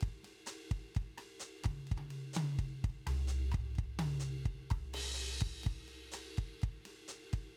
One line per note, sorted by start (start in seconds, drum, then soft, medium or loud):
0.01 kick soft
0.01 cross-stick soft
0.01 ride medium
0.08 kick soft
0.23 snare soft
0.23 ride medium
0.46 cross-stick soft
0.46 hi-hat pedal medium
0.46 ride medium
0.71 kick soft
0.71 ride soft
0.95 kick soft
0.95 ride soft
1.02 kick soft
1.18 cross-stick soft
1.18 ride medium
1.40 hi-hat pedal medium
1.40 ride soft
1.64 kick soft
1.64 high tom medium
1.64 ride medium
1.71 kick soft
1.87 ride soft
1.92 kick soft
1.97 kick soft
1.97 high tom medium
2.11 ride medium
2.33 hi-hat pedal medium
2.33 high tom medium
2.33 ride medium
2.59 kick soft
2.59 ride soft
2.84 kick soft
2.84 ride soft
2.90 kick soft
3.07 floor tom loud
3.07 ride medium
3.28 hi-hat pedal medium
3.32 ride soft
3.52 kick soft
3.52 mid tom medium
3.52 ride soft
3.60 kick soft
3.75 kick soft
3.75 ride soft
3.84 kick soft
3.99 high tom medium
3.99 ride medium
4.20 hi-hat pedal medium
4.20 ride soft
4.46 kick soft
4.46 ride soft
4.71 kick soft
4.71 floor tom medium
4.71 ride medium
4.94 ride medium
4.94 crash loud
5.14 hi-hat pedal medium
5.41 kick soft
5.41 ride medium
5.47 kick soft
5.64 kick soft
5.64 snare soft
5.64 ride medium
5.72 kick soft
5.88 ride soft
6.12 cross-stick soft
6.12 hi-hat pedal medium
6.12 ride medium
6.38 kick soft
6.38 ride soft
6.62 kick soft
6.62 ride soft
6.69 kick soft
6.86 snare soft
6.86 ride medium
7.08 hi-hat pedal medium
7.08 ride soft
7.33 kick soft
7.33 ride soft